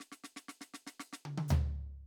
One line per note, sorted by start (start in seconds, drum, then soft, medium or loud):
0.01 snare soft
0.12 snare soft
0.24 snare soft
0.36 snare soft
0.48 snare soft
0.61 snare soft
0.74 snare soft
0.87 snare medium
0.99 snare medium
1.13 snare medium
1.25 high tom medium
1.37 closed hi-hat soft
1.37 high tom medium
1.48 floor tom loud
1.48 hi-hat pedal medium